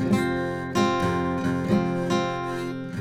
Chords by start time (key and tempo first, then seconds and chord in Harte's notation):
F minor, 88 BPM
0.00 F:min